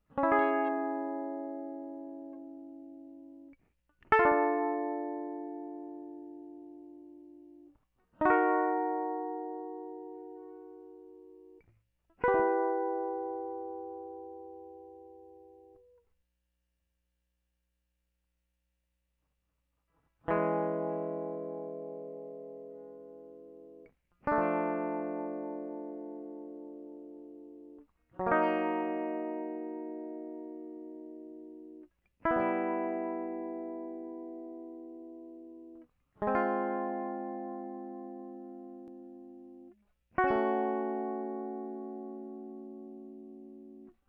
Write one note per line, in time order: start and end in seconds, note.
0.18 3.57 C#4
0.24 3.52 E4
0.32 2.75 G#4
4.12 6.92 A4
4.19 7.72 F4
4.26 7.75 D4
8.22 11.62 D#4
8.26 11.62 F#4
8.30 11.64 A#4
12.24 16.03 B4
12.28 15.84 G4
12.35 15.80 E4
20.29 23.91 E3
20.29 23.89 G#3
24.28 27.87 D4
24.32 27.85 A3
24.39 27.82 F3
28.20 31.87 F#3
28.27 31.86 A#3
28.32 31.87 D#4
32.26 35.86 E4
32.31 35.88 B3
32.37 35.81 G3
36.23 39.88 G#3
36.28 39.72 C4
36.35 39.75 F4
40.18 43.94 F#4
40.24 43.91 C#4
40.31 43.93 A3